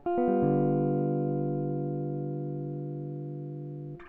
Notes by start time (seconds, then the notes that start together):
0.06 F4
0.18 B3
0.28 G3
0.44 D3